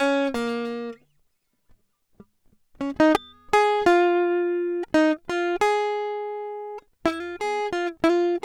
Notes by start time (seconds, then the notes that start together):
0.00 C#4
0.35 A#3
2.82 C#4
3.01 D#4
3.54 G#4
3.87 F4
4.95 D#4
5.31 F4
5.62 G#4
7.07 E4
7.21 F4
7.42 G#4
7.74 F4
8.05 F4